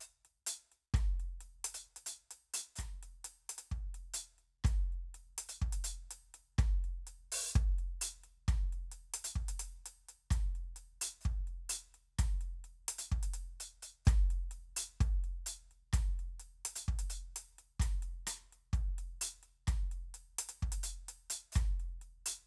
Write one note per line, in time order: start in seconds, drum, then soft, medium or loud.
0.01 closed hi-hat soft
0.01 hi-hat pedal medium
0.25 closed hi-hat soft
0.47 closed hi-hat loud
0.72 closed hi-hat soft
0.94 kick medium
0.94 cross-stick medium
0.94 closed hi-hat soft
1.20 closed hi-hat soft
1.41 closed hi-hat soft
1.65 closed hi-hat loud
1.75 closed hi-hat medium
1.97 closed hi-hat medium
2.07 closed hi-hat medium
2.31 closed hi-hat medium
2.54 closed hi-hat loud
2.76 kick soft
2.76 cross-stick medium
2.76 hi-hat pedal medium
2.80 closed hi-hat medium
3.03 closed hi-hat soft
3.25 closed hi-hat medium
3.50 closed hi-hat medium
3.59 closed hi-hat medium
3.72 kick soft
3.95 closed hi-hat soft
4.14 closed hi-hat loud
4.39 closed hi-hat soft
4.64 kick medium
4.64 cross-stick medium
4.64 closed hi-hat medium
4.93 closed hi-hat soft
5.15 closed hi-hat soft
5.38 closed hi-hat loud
5.49 closed hi-hat medium
5.62 kick medium
5.73 closed hi-hat medium
5.85 closed hi-hat loud
6.11 closed hi-hat medium
6.35 closed hi-hat soft
6.59 kick medium
6.59 cross-stick medium
6.59 closed hi-hat soft
6.85 closed hi-hat soft
7.07 closed hi-hat medium
7.32 open hi-hat loud
7.53 kick medium
7.53 closed hi-hat soft
7.53 hi-hat pedal soft
7.79 closed hi-hat soft
8.02 closed hi-hat loud
8.24 closed hi-hat soft
8.48 kick medium
8.48 cross-stick medium
8.48 closed hi-hat soft
8.73 closed hi-hat soft
8.92 closed hi-hat medium
9.14 closed hi-hat loud
9.25 closed hi-hat loud
9.36 kick soft
9.49 closed hi-hat medium
9.60 closed hi-hat medium
9.86 closed hi-hat medium
10.09 closed hi-hat medium
10.31 kick medium
10.31 cross-stick medium
10.31 closed hi-hat medium
10.56 closed hi-hat soft
10.77 closed hi-hat medium
11.02 closed hi-hat loud
11.21 closed hi-hat soft
11.21 hi-hat pedal soft
11.26 kick medium
11.48 closed hi-hat soft
11.70 closed hi-hat loud
11.95 closed hi-hat soft
12.19 kick medium
12.19 cross-stick medium
12.19 closed hi-hat medium
12.41 closed hi-hat soft
12.65 closed hi-hat soft
12.89 closed hi-hat loud
12.99 closed hi-hat medium
13.12 kick medium
13.23 closed hi-hat medium
13.34 closed hi-hat medium
13.61 closed hi-hat medium
13.83 open hi-hat medium
14.06 kick loud
14.06 cross-stick medium
14.06 closed hi-hat medium
14.06 hi-hat pedal soft
14.31 closed hi-hat soft
14.52 closed hi-hat soft
14.77 closed hi-hat loud
15.01 kick medium
15.01 closed hi-hat soft
15.24 closed hi-hat soft
15.47 closed hi-hat loud
15.71 closed hi-hat soft
15.93 kick medium
15.93 cross-stick medium
15.93 closed hi-hat medium
16.20 closed hi-hat soft
16.40 closed hi-hat medium
16.66 closed hi-hat loud
16.76 closed hi-hat medium
16.88 kick medium
16.99 closed hi-hat medium
17.10 closed hi-hat medium
17.37 closed hi-hat medium
17.59 closed hi-hat soft
17.80 kick medium
17.80 cross-stick medium
17.80 closed hi-hat medium
18.03 closed hi-hat soft
18.27 closed hi-hat loud
18.27 cross-stick medium
18.53 closed hi-hat soft
18.73 kick medium
18.73 closed hi-hat soft
18.99 closed hi-hat soft
19.22 closed hi-hat loud
19.43 closed hi-hat soft
19.68 kick medium
19.68 cross-stick medium
19.68 closed hi-hat medium
19.92 closed hi-hat soft
20.15 closed hi-hat medium
20.39 closed hi-hat loud
20.49 closed hi-hat medium
20.63 kick medium
20.72 closed hi-hat medium
20.84 closed hi-hat loud
21.09 closed hi-hat medium
21.30 open hi-hat loud
21.53 kick medium
21.53 cross-stick medium
21.53 hi-hat pedal medium
21.57 closed hi-hat medium
21.80 closed hi-hat soft
22.02 closed hi-hat soft
22.26 closed hi-hat loud